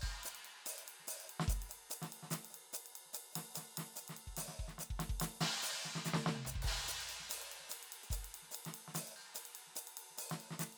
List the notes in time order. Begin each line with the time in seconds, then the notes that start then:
0.01 kick, hi-hat pedal, ride
0.23 hi-hat pedal, ride
0.35 ride
0.44 hi-hat pedal, ride
0.65 hi-hat pedal, ride
0.78 ride
0.85 hi-hat pedal, ride
0.99 snare
1.07 hi-hat pedal, ride
1.20 ride
1.27 hi-hat pedal, ride
1.39 snare
1.48 kick, hi-hat pedal, ride
1.62 ride
1.69 hi-hat pedal, ride
1.90 hi-hat pedal, ride
2.01 snare, ride
2.09 hi-hat pedal, ride
2.22 snare
2.30 snare, hi-hat pedal, ride
2.44 ride
2.50 hi-hat pedal
2.54 ride
2.73 hi-hat pedal, ride
2.86 ride
2.91 hi-hat pedal, ride
3.05 snare
3.13 hi-hat pedal, ride
3.32 snare, hi-hat pedal, ride
3.54 snare, hi-hat pedal, ride
3.74 hi-hat pedal, ride
3.78 snare
3.95 hi-hat pedal, ride
4.08 snare, ride
4.16 ride
4.27 kick
4.36 snare, hi-hat pedal, ride
4.48 snare
4.59 kick
4.68 snare, ride
4.78 snare, hi-hat pedal, ride
4.90 kick
4.99 snare, hi-hat pedal, ride
5.09 kick
5.20 snare, hi-hat pedal, ride
5.40 snare, hi-hat pedal, ride
5.62 hi-hat pedal, ride
5.72 snare
5.82 snare, hi-hat pedal
5.95 snare
6.04 snare, hi-hat pedal
6.13 snare
6.26 snare
6.35 high tom
6.45 hi-hat pedal, floor tom
6.55 kick
6.62 kick, hi-hat pedal, crash
6.67 ride
6.88 hi-hat pedal, ride
7.00 ride
7.08 hi-hat pedal, ride
7.19 snare
7.29 hi-hat pedal, ride
7.41 ride
7.51 ride
7.60 snare
7.69 hi-hat pedal, ride
7.83 ride
7.92 ride
8.03 open hi-hat
8.10 kick, hi-hat pedal, ride
8.24 ride
8.34 ride
8.42 snare
8.48 snare, hi-hat pedal
8.54 ride
8.65 snare, ride
8.74 ride
8.87 snare
8.94 snare, hi-hat pedal, ride
9.07 ride
9.13 hi-hat pedal, ride
9.34 hi-hat pedal, ride
9.45 ride
9.55 ride
9.67 snare
9.75 hi-hat pedal, ride
9.87 ride
9.97 ride
10.10 snare
10.17 hi-hat pedal, ride
10.30 snare, ride
10.40 ride
10.50 snare
10.59 snare, hi-hat pedal, ride
10.72 ride